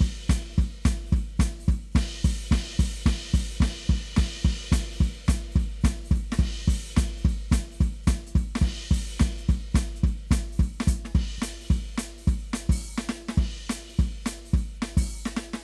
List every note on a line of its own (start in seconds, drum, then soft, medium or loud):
0.01 open hi-hat medium
0.01 kick loud
0.28 closed hi-hat loud
0.28 kick loud
0.28 snare loud
0.28 hi-hat pedal medium
0.51 open hi-hat soft
0.58 open hi-hat medium
0.58 kick loud
0.83 closed hi-hat loud
0.83 kick loud
0.83 snare loud
0.83 hi-hat pedal soft
1.06 open hi-hat soft
1.13 open hi-hat medium
1.13 kick loud
1.37 closed hi-hat loud
1.37 kick loud
1.37 snare loud
1.37 hi-hat pedal soft
1.60 open hi-hat medium
1.68 open hi-hat medium
1.68 kick loud
1.93 kick loud
1.93 snare loud
1.93 hi-hat pedal soft
1.93 crash loud
2.24 open hi-hat loud
2.24 kick loud
2.50 kick loud
2.50 snare loud
2.50 hi-hat pedal medium
2.50 crash loud
2.80 open hi-hat loud
2.80 kick loud
3.04 kick loud
3.04 snare loud
3.04 hi-hat pedal medium
3.04 crash loud
3.34 open hi-hat loud
3.34 kick loud
3.58 kick loud
3.58 hi-hat pedal soft
3.62 snare loud
3.62 crash loud
3.90 kick loud
3.90 crash medium
4.15 kick loud
4.15 snare loud
4.15 hi-hat pedal medium
4.15 crash loud
4.45 kick loud
4.45 crash loud
4.71 closed hi-hat loud
4.71 kick loud
4.71 snare loud
4.71 hi-hat pedal medium
4.93 open hi-hat medium
5.01 open hi-hat medium
5.01 kick loud
5.26 closed hi-hat loud
5.26 kick loud
5.26 snare loud
5.26 hi-hat pedal medium
5.51 open hi-hat medium
5.56 open hi-hat medium
5.56 kick loud
5.81 closed hi-hat loud
5.81 kick loud
5.81 snare loud
5.81 hi-hat pedal medium
6.05 open hi-hat medium
6.11 open hi-hat medium
6.11 kick loud
6.32 snare loud
6.32 hi-hat pedal medium
6.39 kick loud
6.39 crash loud
6.68 open hi-hat loud
6.68 kick loud
6.94 kick loud
6.94 snare loud
6.94 hi-hat pedal medium
6.98 closed hi-hat loud
7.17 open hi-hat medium
7.25 open hi-hat medium
7.25 kick loud
7.50 closed hi-hat loud
7.50 kick loud
7.50 snare loud
7.50 hi-hat pedal soft
7.72 open hi-hat medium
7.81 open hi-hat medium
7.81 kick loud
8.04 closed hi-hat loud
8.04 kick loud
8.04 snare loud
8.04 hi-hat pedal soft
8.27 closed hi-hat medium
8.36 open hi-hat medium
8.36 kick loud
8.55 snare loud
8.55 hi-hat pedal soft
8.62 kick loud
8.62 crash loud
8.91 open hi-hat loud
8.91 kick loud
9.17 closed hi-hat loud
9.17 kick loud
9.17 snare loud
9.17 hi-hat pedal soft
9.38 open hi-hat medium
9.49 open hi-hat medium
9.49 kick loud
9.73 closed hi-hat loud
9.73 kick loud
9.73 snare loud
9.73 hi-hat pedal soft
9.96 closed hi-hat medium
10.04 open hi-hat medium
10.04 kick loud
10.28 kick loud
10.28 hi-hat pedal soft
10.32 closed hi-hat loud
10.32 snare loud
10.53 open hi-hat medium
10.60 open hi-hat medium
10.60 kick loud
10.80 snare loud
10.80 hi-hat pedal soft
10.88 closed hi-hat loud
10.88 kick loud
11.05 snare medium
11.15 kick loud
11.15 crash loud
11.38 kick soft
11.38 hi-hat pedal soft
11.42 closed hi-hat loud
11.42 snare loud
11.61 open hi-hat medium
11.71 open hi-hat medium
11.71 kick loud
11.94 snare loud
11.94 hi-hat pedal soft
11.99 closed hi-hat loud
12.18 open hi-hat medium
12.27 open hi-hat medium
12.27 kick loud
12.48 hi-hat pedal soft
12.54 closed hi-hat loud
12.54 snare loud
12.70 open hi-hat loud
12.70 kick loud
12.98 snare loud
12.98 hi-hat pedal medium
13.09 snare loud
13.29 snare loud
13.38 kick loud
13.38 crash loud
13.67 closed hi-hat loud
13.67 snare loud
13.67 hi-hat pedal soft
13.90 open hi-hat medium
13.99 open hi-hat medium
13.99 kick loud
14.23 closed hi-hat loud
14.23 snare loud
14.23 hi-hat pedal medium
14.46 open hi-hat medium
14.54 open hi-hat medium
14.54 kick loud
14.75 hi-hat pedal soft
14.82 snare loud
14.97 open hi-hat loud
14.97 kick loud
15.26 snare loud
15.26 hi-hat pedal soft
15.37 snare loud
15.54 snare loud